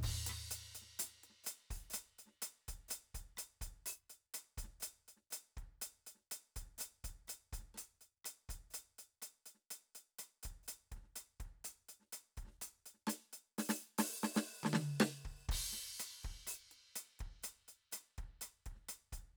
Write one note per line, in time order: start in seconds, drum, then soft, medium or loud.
0.01 kick soft
0.01 hi-hat pedal soft
0.01 crash medium
0.26 cross-stick medium
0.26 closed hi-hat medium
0.31 cross-stick soft
0.51 closed hi-hat medium
0.75 closed hi-hat soft
0.81 snare soft
0.99 closed hi-hat loud
0.99 cross-stick soft
1.23 closed hi-hat soft
1.30 snare soft
1.44 closed hi-hat medium
1.44 cross-stick soft
1.44 hi-hat pedal soft
1.70 open hi-hat soft
1.70 kick soft
1.90 closed hi-hat medium
1.90 cross-stick soft
1.90 snare soft
1.90 hi-hat pedal medium
2.18 closed hi-hat soft
2.25 snare soft
2.42 closed hi-hat medium
2.42 cross-stick soft
2.42 snare soft
2.68 closed hi-hat soft
2.68 kick soft
2.88 closed hi-hat medium
2.88 cross-stick soft
2.88 hi-hat pedal soft
3.14 closed hi-hat soft
3.14 kick soft
3.36 closed hi-hat medium
3.36 cross-stick soft
3.36 hi-hat pedal soft
3.61 closed hi-hat soft
3.61 kick soft
3.86 open hi-hat medium
3.86 cross-stick soft
4.09 closed hi-hat soft
4.34 closed hi-hat medium
4.34 cross-stick soft
4.57 closed hi-hat soft
4.57 kick soft
4.63 snare soft
4.80 closed hi-hat medium
4.80 cross-stick soft
4.80 hi-hat pedal soft
5.08 closed hi-hat soft
5.16 snare soft
5.30 closed hi-hat medium
5.30 cross-stick soft
5.30 hi-hat pedal soft
5.57 kick soft
5.57 closed hi-hat soft
5.81 open hi-hat medium
5.81 cross-stick soft
6.06 closed hi-hat soft
6.15 snare soft
6.17 snare soft
6.31 closed hi-hat medium
6.31 cross-stick soft
6.56 closed hi-hat soft
6.56 kick soft
6.65 snare soft
6.78 closed hi-hat medium
6.78 cross-stick soft
6.78 hi-hat pedal medium
7.04 closed hi-hat soft
7.04 kick soft
7.27 closed hi-hat medium
7.27 cross-stick soft
7.27 hi-hat pedal soft
7.52 closed hi-hat soft
7.52 kick soft
7.59 snare soft
7.74 open hi-hat medium
7.74 cross-stick soft
7.74 snare soft
7.74 hi-hat pedal soft
7.74 percussion soft
8.01 closed hi-hat soft
8.24 closed hi-hat medium
8.24 cross-stick soft
8.24 snare soft
8.49 closed hi-hat soft
8.49 kick soft
8.70 closed hi-hat medium
8.70 cross-stick soft
8.70 hi-hat pedal soft
8.98 closed hi-hat soft
9.22 closed hi-hat medium
9.22 cross-stick soft
9.46 closed hi-hat soft
9.54 snare soft
9.70 closed hi-hat medium
9.70 cross-stick soft
9.95 closed hi-hat soft
10.18 closed hi-hat medium
10.18 cross-stick soft
10.43 closed hi-hat soft
10.43 kick soft
10.63 hi-hat pedal soft
10.68 closed hi-hat medium
10.68 cross-stick soft
10.91 kick soft
10.91 snare soft
10.91 closed hi-hat soft
11.03 snare soft
11.16 closed hi-hat medium
11.16 cross-stick soft
11.40 kick soft
11.40 closed hi-hat soft
11.64 open hi-hat medium
11.64 cross-stick soft
11.88 closed hi-hat soft
11.99 snare soft
12.01 snare soft
12.12 closed hi-hat medium
12.12 cross-stick soft
12.37 closed hi-hat soft
12.37 kick soft
12.44 snare soft
12.46 snare soft
12.61 open hi-hat medium
12.61 cross-stick soft
12.86 closed hi-hat soft
12.94 snare soft
13.07 closed hi-hat medium
13.07 snare medium
13.07 hi-hat pedal soft
13.07 percussion medium
13.33 closed hi-hat medium
13.58 open hi-hat medium
13.58 snare medium
13.69 open hi-hat medium
13.69 snare medium
13.98 open hi-hat medium
13.98 snare medium
14.23 open hi-hat medium
14.23 snare medium
14.34 open hi-hat medium
14.34 snare medium
14.63 snare medium
14.63 high tom medium
14.73 snare medium
14.73 high tom medium
15.00 snare medium
15.00 percussion loud
15.25 kick soft
15.49 kick medium
15.49 crash medium
15.61 kick soft
15.72 snare soft
15.99 closed hi-hat medium
15.99 cross-stick soft
15.99 snare soft
16.23 kick soft
16.23 closed hi-hat soft
16.47 open hi-hat medium
16.47 cross-stick soft
16.47 hi-hat pedal soft
16.71 closed hi-hat soft
16.95 closed hi-hat medium
16.95 cross-stick soft
17.19 kick soft
17.19 closed hi-hat soft
17.42 closed hi-hat medium
17.42 cross-stick soft
17.42 hi-hat pedal soft
17.68 closed hi-hat soft
17.91 closed hi-hat medium
17.91 cross-stick soft
17.91 snare soft
17.91 hi-hat pedal soft
18.18 kick soft
18.18 closed hi-hat soft
18.41 closed hi-hat medium
18.41 cross-stick soft
18.66 kick soft
18.66 closed hi-hat soft
18.75 snare soft
18.88 closed hi-hat medium
18.88 cross-stick soft
19.12 closed hi-hat soft
19.12 kick soft